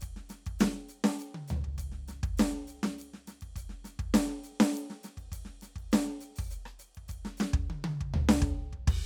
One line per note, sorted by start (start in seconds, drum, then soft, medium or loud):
0.01 kick medium
0.01 hi-hat pedal medium
0.01 ride soft
0.16 snare soft
0.30 snare soft
0.30 hi-hat pedal medium
0.30 ride soft
0.46 kick medium
0.46 ride soft
0.59 snare loud
0.59 hi-hat pedal medium
0.59 ride medium
0.73 snare soft
0.89 hi-hat pedal medium
0.89 ride soft
1.04 snare loud
1.19 hi-hat pedal medium
1.19 ride soft
1.35 high tom medium
1.48 floor tom loud
1.48 hi-hat pedal medium
1.64 kick soft
1.78 kick medium
1.78 hi-hat pedal medium
1.78 ride soft
1.92 snare soft
2.08 snare soft
2.08 hi-hat pedal medium
2.08 ride soft
2.23 kick medium
2.23 ride soft
2.38 snare loud
2.38 hi-hat pedal medium
2.38 ride medium
2.55 snare soft
2.68 hi-hat pedal medium
2.68 ride soft
2.83 snare medium
2.83 ride soft
2.99 hi-hat pedal medium
2.99 ride soft
3.14 snare soft
3.27 snare soft
3.27 hi-hat pedal medium
3.27 ride soft
3.41 kick soft
3.41 ride soft
3.56 kick medium
3.56 hi-hat pedal medium
3.56 ride soft
3.70 snare soft
3.85 snare soft
3.85 hi-hat pedal medium
3.85 ride soft
3.99 kick medium
3.99 ride soft
4.14 snare loud
4.14 hi-hat pedal medium
4.14 ride medium
4.28 snare soft
4.44 hi-hat pedal medium
4.44 ride soft
4.60 snare loud
4.73 hi-hat pedal medium
4.77 ride medium
4.90 snare soft
5.04 snare soft
5.04 hi-hat pedal medium
5.04 ride soft
5.18 kick soft
5.18 ride soft
5.32 kick medium
5.32 hi-hat pedal medium
5.32 ride medium
5.45 snare soft
5.62 snare soft
5.62 hi-hat pedal medium
5.62 ride soft
5.76 kick medium
5.76 ride soft
5.92 snare loud
5.92 hi-hat pedal medium
5.92 ride medium
6.08 snare soft
6.21 hi-hat pedal medium
6.36 open hi-hat medium
6.36 kick medium
6.51 hi-hat pedal medium
6.51 ride soft
6.66 cross-stick medium
6.79 snare soft
6.79 hi-hat pedal medium
6.79 ride soft
6.95 kick soft
6.95 ride soft
7.09 kick medium
7.09 hi-hat pedal medium
7.09 ride soft
7.25 snare medium
7.37 snare loud
7.37 hi-hat pedal medium
7.54 kick loud
7.70 high tom medium
7.84 high tom loud
8.01 kick medium
8.14 floor tom loud
8.29 snare loud
8.42 kick loud
8.73 kick soft
8.88 kick loud
8.88 crash medium